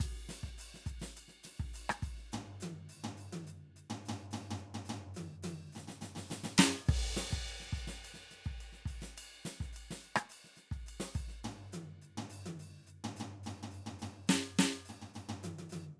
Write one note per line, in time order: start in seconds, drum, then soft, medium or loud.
0.01 kick medium
0.01 hi-hat pedal medium
0.01 ride loud
0.17 kick soft
0.29 snare medium
0.29 hi-hat pedal medium
0.44 kick soft
0.44 snare soft
0.58 hi-hat pedal medium
0.58 ride bell medium
0.75 snare soft
0.86 kick soft
0.86 hi-hat pedal medium
0.86 ride soft
1.00 snare medium
1.00 ride soft
1.17 hi-hat pedal medium
1.17 ride bell medium
1.29 snare soft
1.44 snare soft
1.44 hi-hat pedal medium
1.44 ride medium
1.58 kick soft
1.58 ride soft
1.74 hi-hat pedal medium
1.74 ride bell medium
1.90 cross-stick medium
2.03 kick soft
2.03 hi-hat pedal medium
2.03 ride soft
2.18 snare soft
2.33 floor tom loud
2.33 hi-hat pedal medium
2.61 closed hi-hat soft
2.61 hi-hat pedal medium
2.61 high tom loud
2.89 hi-hat pedal medium
3.04 floor tom loud
3.18 hi-hat pedal medium
3.33 high tom loud
3.47 hi-hat pedal medium
3.77 hi-hat pedal soft
3.90 floor tom loud
4.06 floor tom loud
4.06 hi-hat pedal medium
4.31 floor tom loud
4.31 hi-hat pedal medium
4.51 floor tom loud
4.57 hi-hat pedal soft
4.75 floor tom loud
4.86 hi-hat pedal medium
4.90 floor tom loud
5.15 hi-hat pedal soft
5.15 high tom loud
5.43 hi-hat pedal medium
5.43 high tom loud
5.73 floor tom medium
5.73 hi-hat pedal medium
5.77 snare soft
5.88 snare soft
5.88 floor tom medium
6.01 snare soft
6.01 floor tom medium
6.01 hi-hat pedal medium
6.16 snare medium
6.16 floor tom medium
6.27 snare medium
6.27 floor tom medium
6.27 hi-hat pedal medium
6.44 snare medium
6.44 floor tom medium
6.57 snare loud
6.57 hi-hat pedal medium
6.57 floor tom loud
6.86 kick medium
6.86 hi-hat pedal medium
6.86 crash loud
6.86 ride loud
7.15 snare medium
7.15 hi-hat pedal medium
7.31 kick medium
7.31 snare soft
7.44 hi-hat pedal soft
7.49 ride bell medium
7.61 snare soft
7.73 kick soft
7.73 hi-hat pedal medium
7.73 ride soft
7.88 snare medium
7.88 ride soft
8.04 hi-hat pedal medium
8.04 ride bell medium
8.15 snare soft
8.31 snare soft
8.31 hi-hat pedal medium
8.31 ride soft
8.45 kick soft
8.45 ride soft
8.61 hi-hat pedal soft
8.61 ride bell medium
8.73 snare soft
8.86 kick soft
8.86 hi-hat pedal medium
8.86 ride soft
9.01 snare medium
9.01 ride soft
9.17 hi-hat pedal medium
9.17 ride bell medium
9.44 snare medium
9.44 hi-hat pedal soft
9.44 ride soft
9.61 kick soft
9.61 snare soft
9.73 hi-hat pedal medium
9.73 ride bell medium
9.91 snare medium
10.01 hi-hat pedal soft
10.01 ride bell soft
10.16 cross-stick medium
10.30 hi-hat pedal medium
10.30 ride bell medium
10.45 snare soft
10.56 snare soft
10.56 hi-hat pedal soft
10.56 ride bell soft
10.72 kick soft
10.72 ride soft
10.87 hi-hat pedal soft
10.87 ride bell medium
11.00 snare medium
11.15 kick medium
11.15 hi-hat pedal medium
11.15 ride bell soft
11.29 snare soft
11.44 floor tom loud
11.44 hi-hat pedal soft
11.73 closed hi-hat soft
11.73 hi-hat pedal medium
11.73 high tom loud
12.02 hi-hat pedal soft
12.18 floor tom loud
12.30 hi-hat pedal medium
12.46 open hi-hat soft
12.46 high tom loud
12.60 hi-hat pedal medium
12.87 hi-hat pedal soft
13.05 floor tom loud
13.17 floor tom loud
13.17 hi-hat pedal medium
13.44 floor tom loud
13.44 hi-hat pedal soft
13.63 floor tom medium
13.71 hi-hat pedal soft
13.87 floor tom loud
13.99 floor tom loud
13.99 hi-hat pedal soft
14.28 snare loud
14.28 hi-hat pedal soft
14.57 snare loud
14.57 hi-hat pedal soft
14.85 hi-hat pedal medium
14.90 floor tom medium
15.02 floor tom medium
15.14 floor tom medium
15.14 hi-hat pedal soft
15.29 floor tom loud
15.44 hi-hat pedal medium
15.44 high tom loud
15.59 high tom medium
15.70 hi-hat pedal medium
15.70 high tom loud